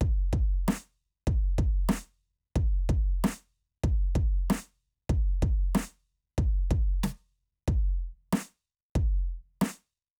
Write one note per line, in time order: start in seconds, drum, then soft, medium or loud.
0.01 kick loud
0.33 kick loud
0.68 snare loud
1.27 kick loud
1.59 kick loud
1.89 snare loud
2.56 kick loud
2.89 kick loud
3.24 snare loud
3.84 kick loud
4.15 kick loud
4.50 snare loud
5.10 kick loud
5.42 kick loud
5.75 snare loud
6.38 kick loud
6.71 kick loud
7.04 snare loud
7.68 kick loud
8.33 snare loud
8.95 kick loud
9.61 snare loud